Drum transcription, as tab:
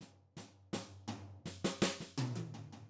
HH |-------------g--|
SD |g-o-o---oooo----|
T1 |-------------o--|
T2 |------------o---|
FT |g-o-o-o-------oo|